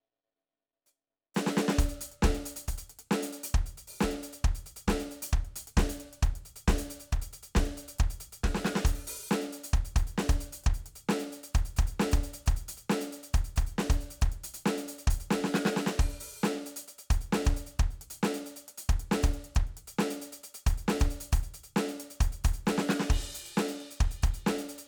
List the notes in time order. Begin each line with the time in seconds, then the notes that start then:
0.86 hi-hat pedal
1.34 snare, hi-hat pedal
1.57 snare
1.68 snare
1.78 closed hi-hat, kick
1.89 closed hi-hat
2.01 closed hi-hat
2.12 closed hi-hat
2.22 kick, snare
2.35 closed hi-hat
2.46 closed hi-hat
2.56 closed hi-hat
2.68 closed hi-hat, kick
2.78 closed hi-hat
2.90 closed hi-hat
2.99 closed hi-hat
3.11 snare
3.23 closed hi-hat
3.33 closed hi-hat
3.43 closed hi-hat
3.54 kick, closed hi-hat
3.66 closed hi-hat
3.77 open hi-hat
3.99 snare, hi-hat pedal
4.04 kick
4.11 closed hi-hat
4.23 closed hi-hat
4.33 closed hi-hat
4.44 kick, closed hi-hat
4.55 closed hi-hat
4.66 closed hi-hat
4.76 closed hi-hat
4.88 kick, snare
5.00 closed hi-hat
5.11 closed hi-hat
5.22 closed hi-hat
5.33 kick, closed hi-hat
5.45 closed hi-hat
5.56 closed hi-hat
5.67 closed hi-hat
5.77 kick, snare
5.89 closed hi-hat
6.00 closed hi-hat
6.13 closed hi-hat
6.23 kick, closed hi-hat
6.35 closed hi-hat
6.45 closed hi-hat
6.56 closed hi-hat
6.68 kick, snare
6.78 closed hi-hat
6.90 closed hi-hat
7.00 closed hi-hat
7.12 kick, closed hi-hat
7.22 closed hi-hat
7.33 closed hi-hat
7.43 closed hi-hat
7.55 kick, snare
7.65 closed hi-hat
7.77 closed hi-hat
7.88 closed hi-hat
7.99 kick, closed hi-hat
8.10 closed hi-hat
8.32 closed hi-hat
8.43 kick, snare
8.55 snare
8.75 snare
8.85 closed hi-hat, kick
8.95 open hi-hat
9.07 open hi-hat
9.29 snare, hi-hat pedal
9.41 closed hi-hat
9.53 closed hi-hat
9.64 closed hi-hat
9.73 kick, closed hi-hat
9.85 closed hi-hat
9.96 closed hi-hat, kick
10.07 closed hi-hat
10.18 snare
10.29 closed hi-hat, kick
10.40 closed hi-hat
10.53 closed hi-hat
10.64 kick, closed hi-hat
10.74 closed hi-hat
10.86 closed hi-hat
10.95 closed hi-hat
11.09 snare
11.19 closed hi-hat
11.32 closed hi-hat
11.43 closed hi-hat
11.54 closed hi-hat, kick
11.65 closed hi-hat
11.76 closed hi-hat, kick
11.87 closed hi-hat
12.00 snare
12.11 closed hi-hat, kick
12.23 closed hi-hat
12.33 closed hi-hat
12.46 closed hi-hat, kick
12.56 closed hi-hat
12.68 closed hi-hat
12.77 closed hi-hat
12.90 snare
13.01 closed hi-hat
13.12 closed hi-hat
13.23 closed hi-hat
13.34 closed hi-hat, kick
13.44 closed hi-hat
13.56 closed hi-hat, kick
13.66 closed hi-hat
13.78 snare
13.90 closed hi-hat, kick
14.10 closed hi-hat
14.22 kick, closed hi-hat
14.32 closed hi-hat
14.44 closed hi-hat
14.54 closed hi-hat
14.66 snare
14.78 closed hi-hat
14.88 closed hi-hat
14.98 closed hi-hat
15.07 closed hi-hat, kick
15.20 closed hi-hat
15.31 snare
15.44 snare
15.54 snare
15.65 snare
15.76 snare
15.86 snare
15.99 open hi-hat, kick
16.08 open hi-hat
16.20 open hi-hat
16.31 open hi-hat
16.42 snare, hi-hat pedal
16.55 closed hi-hat
16.66 closed hi-hat
16.76 closed hi-hat
16.88 closed hi-hat
16.98 closed hi-hat
17.10 closed hi-hat, kick
17.21 closed hi-hat
17.32 snare
17.45 closed hi-hat, kick
17.56 closed hi-hat
17.79 kick, closed hi-hat
17.90 closed hi-hat
18.01 closed hi-hat
18.10 closed hi-hat
18.23 snare
18.34 closed hi-hat
18.46 closed hi-hat
18.56 closed hi-hat
18.68 closed hi-hat
18.78 closed hi-hat
18.89 kick, closed hi-hat
19.00 closed hi-hat
19.11 snare
19.23 closed hi-hat, kick
19.34 closed hi-hat
19.44 closed hi-hat
19.55 kick, closed hi-hat
19.67 closed hi-hat
19.77 closed hi-hat
19.87 closed hi-hat
19.99 snare
20.10 closed hi-hat
20.22 closed hi-hat
20.32 closed hi-hat
20.43 closed hi-hat
20.54 closed hi-hat
20.66 closed hi-hat, kick
20.78 closed hi-hat
20.88 snare
21.00 closed hi-hat, kick
21.10 closed hi-hat
21.32 closed hi-hat, kick
21.43 closed hi-hat
21.54 closed hi-hat
21.63 closed hi-hat
21.76 snare
21.88 closed hi-hat
22.00 closed hi-hat
22.10 closed hi-hat
22.20 closed hi-hat, kick
22.32 closed hi-hat
22.44 closed hi-hat, kick
22.53 closed hi-hat
22.66 snare, hi-hat pedal
22.78 snare
22.89 snare
23.00 snare
23.10 kick, crash
23.21 closed hi-hat
23.35 closed hi-hat
23.46 closed hi-hat
23.57 snare
23.68 closed hi-hat
23.80 closed hi-hat
23.91 closed hi-hat
24.00 kick, closed hi-hat
24.11 closed hi-hat
24.22 closed hi-hat, kick
24.34 closed hi-hat
24.46 snare
24.58 closed hi-hat
24.69 closed hi-hat
24.78 closed hi-hat